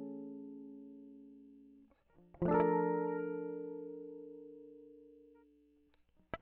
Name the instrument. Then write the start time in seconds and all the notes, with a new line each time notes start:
electric guitar
2.43 F3
2.48 D4 A4
2.54 A#4